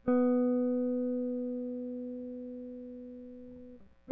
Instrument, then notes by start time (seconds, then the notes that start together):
electric guitar
0.09 B3